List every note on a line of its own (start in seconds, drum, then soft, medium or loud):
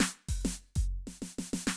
0.00 snare loud
0.29 open hi-hat medium
0.29 kick medium
0.40 hi-hat pedal soft
0.45 snare medium
0.75 open hi-hat loud
0.75 kick medium
1.07 snare soft
1.22 snare medium
1.38 snare medium
1.53 snare medium
1.67 snare loud